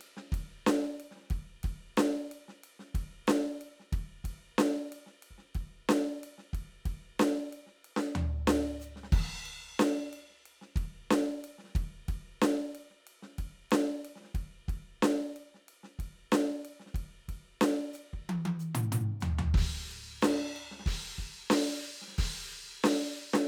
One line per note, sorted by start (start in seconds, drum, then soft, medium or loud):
0.01 ride medium
0.17 snare medium
0.32 kick medium
0.32 ride medium
0.67 snare loud
0.67 ride medium
0.83 snare soft
0.91 snare soft
1.00 ride medium
1.11 snare soft
1.16 snare soft
1.20 snare soft
1.23 snare soft
1.27 kick medium
1.27 snare soft
1.27 ride medium
1.32 snare soft
1.63 kick medium
1.63 ride medium
1.97 snare loud
1.97 ride medium
2.32 ride medium
2.48 snare soft
2.64 ride medium
2.79 snare soft
2.95 kick medium
2.95 ride medium
3.28 snare loud
3.28 ride medium
3.48 snare soft
3.61 ride medium
3.80 snare soft
3.93 kick medium
3.93 ride medium
4.24 kick medium
4.24 ride medium
4.58 snare loud
4.58 ride medium
4.75 snare soft
4.92 ride medium
5.06 snare soft
5.23 ride medium
5.31 kick soft
5.38 snare soft
5.55 kick medium
5.55 ride medium
5.89 snare loud
5.89 ride medium
6.24 ride medium
6.38 snare soft
6.53 kick medium
6.53 ride medium
6.86 kick medium
6.86 ride medium
7.20 snare loud
7.20 ride medium
7.53 ride medium
7.67 snare soft
7.85 ride medium
7.97 snare medium
8.15 floor tom loud
8.47 snare loud
8.47 ride loud
8.80 hi-hat pedal medium
8.80 ride bell soft
8.96 snare soft
9.04 snare soft
9.12 kick loud
9.12 crash loud
9.46 ride soft
9.79 snare loud
9.79 ride medium
9.96 snare soft
10.13 ride medium
10.30 snare soft
10.46 ride medium
10.61 snare soft
10.76 kick medium
10.76 ride medium
11.11 snare loud
11.11 ride medium
11.44 ride medium
11.58 snare soft
11.64 snare soft
11.68 snare soft
11.75 kick medium
11.75 ride medium
12.08 kick medium
12.08 ride medium
12.42 snare loud
12.42 ride medium
12.55 snare soft
12.61 snare soft
12.75 ride medium
12.90 snare soft
13.07 ride medium
13.23 snare soft
13.38 kick medium
13.38 ride medium
13.71 snare loud
13.71 ride medium
14.05 ride medium
14.16 snare soft
14.21 snare soft
14.24 snare soft
14.28 snare soft
14.32 kick medium
14.32 snare soft
14.32 ride medium
14.68 kick medium
14.68 ride medium
15.03 snare loud
15.03 ride medium
15.22 snare soft
15.36 ride soft
15.54 snare soft
15.68 ride medium
15.83 snare soft
15.99 kick medium
15.99 ride medium
16.22 kick soft
16.32 snare loud
16.32 ride medium
16.65 ride medium
16.80 snare soft
16.86 snare soft
16.94 kick medium
16.94 ride medium
17.29 kick soft
17.29 ride medium
17.61 snare loud
17.61 ride medium
17.71 snare soft
17.93 hi-hat pedal medium
17.93 ride medium
18.13 kick soft
18.29 high tom loud
18.45 high tom loud
18.59 hi-hat pedal medium
18.75 mid tom loud
18.92 mid tom loud
19.21 floor tom loud
19.21 hi-hat pedal medium
19.39 floor tom loud
19.54 kick loud
19.54 crash loud
19.88 kick soft
19.88 ride soft
20.22 snare loud
20.22 crash loud
20.31 cross-stick soft
20.38 cross-stick soft
20.44 snare soft
20.56 ride soft
20.71 snare soft
20.80 snare soft
20.86 kick medium
20.86 crash loud
21.18 kick soft
21.50 cross-stick medium
21.50 snare loud
21.50 crash loud
21.85 hi-hat pedal soft
22.02 snare soft
22.08 snare soft
22.12 snare soft
22.18 kick medium
22.18 crash loud
22.84 snare loud
22.84 crash loud
22.92 snare soft
23.34 snare loud